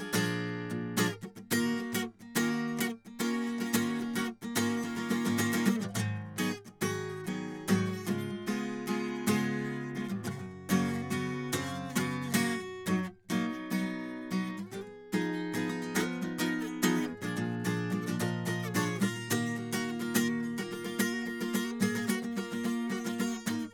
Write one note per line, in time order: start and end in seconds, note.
0.00 0.14 F3
0.00 0.15 D4
0.00 0.16 G#4
0.00 0.15 A#4
0.14 0.71 A#2
0.14 0.72 F3
0.14 0.99 D4
0.14 0.99 G#4
0.14 1.00 A#4
0.72 0.97 A#2
0.72 0.98 F3
0.98 1.12 A#2
0.98 1.15 F3
0.98 1.16 D4
0.98 1.18 G#4
0.98 1.20 A#4
1.26 1.35 A#4
1.37 1.53 A#4
1.52 1.80 D#3
1.52 1.79 A#3
1.52 1.70 C4
1.52 1.66 F4
1.52 1.81 A#4
1.66 1.81 F#4
1.80 1.97 A#3
1.80 1.95 F#4
1.80 1.96 A#4
1.96 2.14 A#3
1.96 2.04 C#4
1.96 2.14 F#4
1.96 2.08 A#4
2.23 2.36 A#3
2.37 2.94 D#3
2.37 2.83 A#3
2.37 2.54 C#4
2.37 2.51 F4
2.37 2.79 A#4
2.51 2.81 F#4
2.82 3.01 A#3
2.82 2.95 C#4
2.82 2.95 F#4
2.82 2.99 A#4
3.08 3.21 A#3
3.21 3.34 D#3
3.21 3.63 A#3
3.21 3.48 C#4
3.21 3.34 F4
3.21 3.39 A#4
3.34 3.48 F#4
3.44 3.60 A#4
3.49 3.60 F#4
3.62 3.74 D#3
3.62 3.75 A#3
3.62 3.75 C#4
3.62 3.75 F4
3.62 3.74 A#4
3.75 4.00 D#3
3.75 4.01 A#3
3.75 3.98 C#4
3.75 3.89 F4
3.75 3.87 A#4
3.89 4.01 F#4
3.98 4.17 D#3
3.98 4.17 C#4
3.98 4.09 F#4
4.02 4.18 A#3
4.02 4.16 A#4
4.17 4.32 D#3
4.17 4.36 A#3
4.17 4.34 C#4
4.17 4.37 F#4
4.17 4.34 A#4
4.43 4.57 D#3
4.43 4.58 A#3
4.43 4.56 A#4
4.58 4.99 D#3
4.58 4.81 A#3
4.58 4.79 C#4
4.58 4.69 F4
4.58 4.74 A#4
4.69 4.83 F#4
4.82 4.99 A#3
4.82 4.98 C#4
4.86 4.98 F4
4.86 4.96 A#4
4.96 5.11 D#3
4.96 5.11 A#3
4.96 5.12 C#4
4.96 5.12 F4
4.96 5.12 A#4
5.11 5.26 D#3
5.11 5.28 A#3
5.11 5.27 C#4
5.11 5.26 F4
5.11 5.25 A#4
5.26 5.39 D#3
5.26 5.39 A#3
5.26 5.40 C#4
5.26 5.41 F4
5.26 5.41 A#4
5.40 5.56 D#3
5.40 5.56 A#3
5.40 5.55 C#4
5.40 5.55 F4
5.40 5.51 A#4
5.54 5.67 D#3
5.54 5.67 A#3
5.54 5.67 C#4
5.54 5.75 F4
5.54 5.69 A#4
5.67 5.75 D#3
5.67 5.83 A#3
5.67 5.78 C#4
5.67 5.81 A#4
5.82 5.95 G4
5.97 6.56 G#2
5.97 6.41 D#3
5.97 6.12 F#3
6.39 6.62 D#3
6.39 6.59 F#3
6.39 6.58 B3
6.39 6.61 D#4
6.39 6.63 G#4
6.69 6.83 D#3
6.83 6.92 G#2
6.83 7.29 D#3
6.83 7.03 F#3
6.83 6.99 B3
6.83 7.26 F#4
6.83 7.15 G#4
7.26 7.69 D#3
7.26 7.69 F#3
7.26 7.49 B3
7.26 7.69 D#4
7.26 7.71 G#4
7.69 8.01 G#2
7.69 7.94 D#3
7.69 7.83 F#3
7.69 7.88 B3
7.69 8.08 F#4
7.69 8.08 G#4
8.08 8.35 G#2
8.08 8.36 C#3
8.08 8.46 G#3
8.08 8.35 B3
8.08 8.48 F4
8.08 8.38 G#4
8.48 8.61 C#3
8.48 8.90 G#3
8.48 8.89 B3
8.48 8.89 F4
8.48 8.88 G#4
8.89 9.28 C#3
8.89 9.28 G#3
8.89 9.29 B3
8.89 9.29 F4
8.89 9.28 G#4
9.29 10.10 C#3
9.29 9.98 G#3
9.29 9.97 B3
9.29 9.96 F4
9.29 9.95 G#4
9.96 10.08 G#3
9.96 10.10 B3
9.96 10.17 F4
9.96 10.09 G#4
10.11 10.27 E2
10.11 10.25 F#4
10.25 10.69 F#2
10.25 10.45 C#3
10.25 10.37 A#3
10.25 10.63 F#4
10.70 11.14 F#2
10.70 10.96 C#3
10.70 10.96 F#3
10.70 11.12 A#3
10.70 10.93 C#4
10.70 11.10 F#4
11.12 11.28 F#2
11.12 11.52 C#3
11.12 11.54 B3
11.12 11.27 C#4
11.12 11.54 F#4
11.54 11.94 F#2
11.54 11.98 C#3
11.54 11.95 C4
11.54 11.70 D#4
11.54 11.74 F#4
11.97 12.37 F#2
11.97 12.36 C#3
11.97 12.31 B3
11.97 12.11 C#4
11.97 12.08 F#4
12.35 12.48 F#2
12.35 12.48 C#3
12.35 12.60 A#3
12.35 12.65 C#4
12.35 12.62 F#4
12.62 12.90 F#4
12.87 12.97 F#2
12.87 13.07 B2
12.87 13.13 F#3
12.87 13.08 D#4
12.87 13.08 F#4
13.31 13.45 B2
13.31 13.70 F#3
13.31 13.50 A#3
13.31 13.73 D#4
13.31 13.42 F#4
13.52 13.73 B3
13.72 13.82 B2
13.72 14.32 F#3
13.72 14.31 B3
13.72 14.33 D#4
14.32 14.43 B2
14.32 14.63 F#3
14.32 14.56 B3
14.32 14.61 D#4
14.82 15.15 G#4
15.14 15.56 F3
15.14 15.34 B3
15.14 15.55 D#4
15.14 15.55 G#4
15.55 15.94 F3
15.55 15.71 B3
15.55 15.70 D#4
15.55 15.97 G#4
15.71 15.84 B3
15.71 15.97 D#4
15.84 15.97 B3
15.97 16.21 F3
15.97 16.23 B3
15.97 16.11 D#4
15.97 16.07 A4
16.23 16.36 F3
16.23 16.41 B3
16.23 16.41 D#4
16.23 16.39 A#4
16.40 16.54 F3
16.40 16.82 B3
16.40 16.65 D#4
16.40 16.66 A#4
16.40 16.55 D#5
16.66 16.84 D#4
16.84 17.02 F3
16.84 17.10 B3
16.84 17.14 D#4
16.84 17.09 G#4
16.84 17.05 C#5
17.09 17.22 G#4
17.24 17.38 A#2
17.24 17.37 F3
17.24 17.67 D4
17.24 17.67 G#4
17.38 17.66 A#2
17.38 17.65 F3
17.66 17.91 A#2
17.66 17.92 F3
17.66 17.94 D4
17.66 18.12 G#4
17.91 18.09 A#2
17.91 18.10 F3
17.91 18.09 D4
18.07 18.18 A#2
18.07 18.20 F3
18.07 18.19 D4
18.07 18.23 D#5
18.21 18.46 A#2
18.21 18.47 F3
18.21 18.48 A#4
18.21 18.49 D#5
18.47 18.75 A#2
18.47 18.75 F3
18.47 18.70 A#4
18.47 18.69 D#5
18.76 19.01 A#2
18.76 19.00 F3
18.76 18.96 D4
18.76 19.00 G#4
18.76 19.02 C#5
19.02 19.30 A#2
19.02 19.30 D#3
19.02 19.14 D4
19.02 19.28 F4
19.02 19.33 A#4
19.32 19.76 A#2
19.32 19.57 D#3
19.32 19.58 A#3
19.32 19.57 F#4
19.32 19.61 A#4
19.57 19.74 D#3
19.57 19.73 A#3
19.57 19.74 F#4
19.74 20.27 A#2
19.74 20.04 D#3
19.74 20.03 A#3
19.74 19.95 F#4
19.74 19.98 A#4
20.00 20.14 D#3
20.00 20.16 A#3
20.00 20.17 F4
20.00 20.16 A#4
20.16 20.61 D#3
20.16 20.61 A#3
20.16 20.28 F4
20.16 20.33 A#4
20.29 20.40 F#4
20.41 20.55 F4
20.46 20.56 A#4
20.59 20.88 D#3
20.59 20.73 A#3
20.59 20.73 F4
20.59 20.73 A#4
20.73 20.85 A#3
20.73 20.86 F4
20.73 20.85 A#4
20.86 21.06 D#3
20.86 21.01 A#3
20.86 21.01 F4
20.86 21.00 A#4
21.01 21.25 A#3
21.01 21.13 F4
21.01 21.28 A#4
21.14 21.25 F#4
21.27 21.42 A#3
21.27 21.42 F4
21.27 21.41 A#4
21.42 21.53 D#3
21.42 21.55 A#3
21.42 21.56 F4
21.42 21.56 A#4
21.55 21.70 D#3
21.55 21.82 A#3
21.55 21.66 F4
21.55 21.75 A#4
21.66 21.76 F#4
21.76 21.84 G#4
21.81 22.17 A#2
21.81 21.93 D#3
21.81 21.98 A#3
21.81 21.96 G#4
21.81 21.95 A#4
21.96 22.06 D#3
21.96 22.10 A#3
21.96 22.08 G#4
21.96 22.09 A#4
22.09 22.20 D#3
22.09 22.25 A#3
22.09 22.22 F#4
22.09 22.18 A#4
22.25 22.32 D#3
22.25 22.36 A#3
22.38 22.54 A#3
22.38 22.52 F4
22.38 22.66 A#4
22.52 22.61 D#3
22.52 22.66 A#3
22.52 22.64 F4
22.65 22.77 D#3
22.65 22.91 A#3
22.65 22.92 F4
22.65 22.93 A#4
22.91 22.99 D#3
22.91 23.08 A#3
22.91 23.04 F#4
22.91 23.04 A#4
23.06 23.15 D#3
23.06 23.18 A#3
23.06 23.19 F4
23.06 23.19 A#4
23.21 23.41 A#3
23.21 23.41 F#4
23.21 23.74 A#4
23.48 23.66 A#2
23.48 23.70 D#3
23.48 23.72 D#4
23.48 23.60 F4